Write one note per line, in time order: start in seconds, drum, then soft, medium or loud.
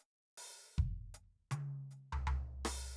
0.00 closed hi-hat soft
0.37 open hi-hat medium
0.75 kick medium
0.75 closed hi-hat soft
0.75 hi-hat pedal soft
1.14 closed hi-hat medium
1.51 closed hi-hat medium
1.51 high tom medium
1.91 hi-hat pedal medium
2.12 floor tom medium
2.27 floor tom medium
2.65 open hi-hat loud
2.65 cross-stick medium